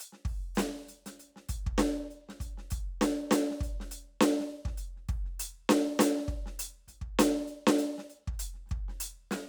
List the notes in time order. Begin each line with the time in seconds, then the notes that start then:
0.00 closed hi-hat
0.12 snare
0.25 open hi-hat, kick
0.55 snare, hi-hat pedal
0.59 closed hi-hat
0.77 snare
0.89 closed hi-hat
1.06 closed hi-hat, snare
1.20 closed hi-hat
1.36 snare
1.49 closed hi-hat, kick
1.66 kick
1.78 open hi-hat, snare, hi-hat pedal
2.10 closed hi-hat
2.29 snare, closed hi-hat
2.40 closed hi-hat, kick
2.58 snare
2.70 closed hi-hat, kick
3.01 closed hi-hat, snare
3.31 closed hi-hat, snare
3.50 snare
3.60 closed hi-hat, kick
3.80 snare
3.91 closed hi-hat
4.21 closed hi-hat, snare
4.40 snare
4.65 kick, snare
4.77 closed hi-hat
4.96 snare
5.09 kick, closed hi-hat
5.25 snare
5.29 snare
5.40 closed hi-hat
5.69 closed hi-hat, snare
5.99 closed hi-hat, snare
6.17 snare
6.28 kick, closed hi-hat
6.46 snare
6.59 closed hi-hat
6.88 closed hi-hat, kick, snare
7.01 kick
7.19 closed hi-hat, snare
7.39 snare
7.48 closed hi-hat
7.67 snare
7.78 closed hi-hat
7.98 snare
8.10 closed hi-hat
8.27 kick
8.32 snare
8.39 closed hi-hat
8.54 snare
8.66 snare, closed hi-hat
8.71 kick
8.88 snare
9.00 closed hi-hat
9.31 closed hi-hat, snare
9.36 snare